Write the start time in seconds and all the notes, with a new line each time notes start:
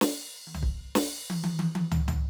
0.01 snare, crash
0.47 high tom
0.54 floor tom
0.63 kick
0.95 snare, crash
1.30 high tom
1.44 high tom
1.59 high tom
1.75 high tom
1.92 floor tom
2.08 floor tom